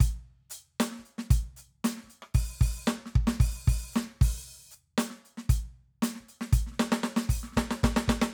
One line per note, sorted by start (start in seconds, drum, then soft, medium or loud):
0.01 open hi-hat loud
0.01 kick loud
0.51 closed hi-hat loud
0.51 hi-hat pedal medium
0.81 closed hi-hat loud
0.81 snare loud
0.92 snare soft
0.96 snare soft
0.98 kick soft
0.98 snare soft
1.04 closed hi-hat soft
1.04 snare soft
1.19 snare medium
1.31 closed hi-hat loud
1.31 kick loud
1.57 closed hi-hat soft
1.57 hi-hat pedal medium
1.85 closed hi-hat loud
1.85 snare loud
1.97 snare soft
2.01 snare soft
2.04 kick soft
2.04 snare soft
2.07 closed hi-hat soft
2.07 snare soft
2.23 cross-stick medium
2.35 open hi-hat loud
2.35 kick loud
2.62 open hi-hat loud
2.62 kick loud
2.88 snare loud
2.88 hi-hat pedal soft
3.06 snare medium
3.16 kick loud
3.28 snare loud
3.41 open hi-hat loud
3.41 kick loud
3.68 open hi-hat loud
3.68 kick loud
3.93 kick soft
3.93 snare loud
3.93 hi-hat pedal medium
4.22 open hi-hat loud
4.22 kick loud
4.72 hi-hat pedal medium
4.98 closed hi-hat loud
4.98 snare loud
5.11 snare soft
5.13 snare soft
5.26 closed hi-hat soft
5.38 snare medium
5.50 closed hi-hat loud
5.50 kick loud
6.03 closed hi-hat loud
6.03 snare loud
6.16 snare soft
6.21 kick soft
6.29 closed hi-hat medium
6.42 snare medium
6.53 closed hi-hat loud
6.53 kick loud
6.67 snare soft
6.72 snare soft
6.77 snare soft
6.80 snare loud
6.92 snare loud
7.04 snare loud
7.17 snare loud
7.30 open hi-hat loud
7.30 kick loud
7.44 snare soft
7.48 cross-stick soft
7.51 cross-stick soft
7.51 snare soft
7.51 hi-hat pedal soft
7.57 kick medium
7.57 snare loud
7.71 snare medium
7.84 kick loud
7.84 snare loud
7.97 snare loud
8.08 kick medium
8.08 snare loud
8.22 snare loud